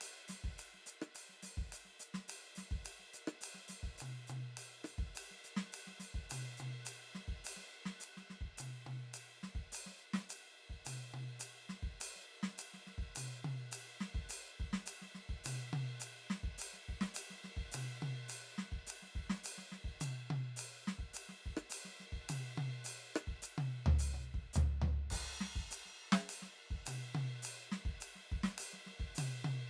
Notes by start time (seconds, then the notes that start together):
0.01 hi-hat pedal, ride
0.28 snare, hi-hat pedal
0.44 kick
0.58 hi-hat pedal, ride
0.74 snare
0.86 hi-hat pedal
1.02 cross-stick
1.15 hi-hat pedal, ride
1.29 snare
1.43 snare, hi-hat pedal
1.57 kick
1.72 hi-hat pedal, ride
1.85 snare
2.00 hi-hat pedal
2.14 snare
2.28 hi-hat pedal, ride
2.55 snare, hi-hat pedal
2.71 kick
2.85 hi-hat pedal, ride
3.00 snare
3.14 hi-hat pedal
3.28 cross-stick
3.41 hi-hat pedal, ride
3.55 snare
3.68 snare, hi-hat pedal
3.83 kick
3.98 hi-hat pedal, ride
4.02 high tom
4.27 hi-hat pedal, high tom
4.57 hi-hat pedal, ride
4.85 cross-stick, hi-hat pedal
4.98 kick
5.15 hi-hat pedal, ride
5.31 snare
5.44 hi-hat pedal
5.57 snare
5.72 hi-hat pedal, ride
5.87 snare
6.00 snare, hi-hat pedal
6.14 kick
6.30 hi-hat pedal, high tom, ride
6.57 hi-hat pedal, high tom
6.85 hi-hat pedal, ride
7.15 snare
7.28 kick
7.45 hi-hat pedal, ride
7.57 snare
7.86 snare
8.00 hi-hat pedal, ride
8.17 snare
8.30 snare
8.41 kick
8.58 hi-hat pedal, high tom, ride
8.87 high tom
9.14 hi-hat pedal, ride
9.43 snare
9.55 kick
9.72 hi-hat pedal, ride
9.86 snare
10.14 snare
10.30 hi-hat pedal, ride
10.70 kick
10.85 hi-hat pedal, high tom, ride
11.14 high tom
11.40 hi-hat pedal, ride
11.69 snare
11.83 kick
12.00 hi-hat pedal, ride
12.16 snare
12.43 snare
12.58 hi-hat pedal, ride
12.74 snare
12.87 snare
12.98 kick
13.15 hi-hat pedal, high tom, ride
13.45 high tom
13.72 hi-hat pedal, ride
14.01 snare
14.15 kick
14.29 hi-hat pedal, ride
14.60 kick
14.73 snare
14.86 hi-hat pedal, ride
15.02 snare
15.15 snare
15.29 kick
15.44 hi-hat pedal, high tom, ride
15.73 high tom
16.00 hi-hat pedal, ride
16.30 snare
16.43 kick
16.58 hi-hat pedal, ride
16.74 snare
16.89 kick
17.01 snare
17.14 hi-hat pedal, ride
17.30 snare
17.44 snare
17.57 kick
17.72 hi-hat pedal, high tom, ride
18.02 high tom
18.29 hi-hat pedal, ride
18.58 snare
18.72 kick
18.87 hi-hat pedal, ride
19.02 snare
19.15 kick
19.30 snare
19.44 hi-hat pedal, ride
19.58 snare
19.72 snare
19.84 kick
20.01 hi-hat pedal, high tom, ride bell
20.30 high tom
20.57 hi-hat pedal, ride
20.88 snare
20.99 kick
21.14 hi-hat pedal, ride
21.29 snare
21.46 kick
21.57 cross-stick
21.70 hi-hat pedal, ride
21.85 snare
22.00 snare
22.12 kick
22.29 hi-hat pedal, high tom, ride
22.58 high tom
22.84 hi-hat pedal, ride
23.16 cross-stick
23.27 kick
23.42 hi-hat pedal, ride
23.58 high tom
23.86 floor tom
23.99 hi-hat pedal, ride
24.14 high tom
24.34 kick
24.53 floor tom, hi-hat pedal
24.82 floor tom
25.10 kick, hi-hat pedal, crash
25.41 snare
25.56 kick
25.71 hi-hat pedal, ride
25.85 snare
26.12 snare
26.29 hi-hat pedal, ride
26.42 snare
26.71 kick
26.86 hi-hat pedal, high tom, ride
27.15 high tom
27.43 hi-hat pedal, ride
27.72 snare
27.85 kick
28.00 hi-hat pedal, ride
28.16 snare
28.32 kick
28.44 snare
28.58 hi-hat pedal, ride
28.73 snare
28.87 snare
29.00 kick
29.15 hi-hat pedal, high tom, ride
29.45 high tom